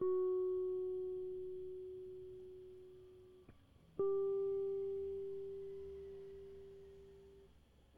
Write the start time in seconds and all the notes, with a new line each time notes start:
0.02 F#4
4.00 G4